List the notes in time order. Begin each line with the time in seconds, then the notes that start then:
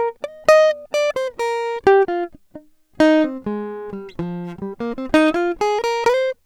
0.01 A#4
0.26 D#5
0.50 D#5
0.72 D5
0.96 D5
1.18 C5
1.41 A#4
1.89 G4
2.10 F4
3.02 D#4
3.26 C4
3.49 G#3
3.96 G3
4.21 F3
4.65 G3
4.82 A#3
5.00 C4
5.16 D#4
5.36 F4
5.63 G#4
5.86 A#4
6.09 C5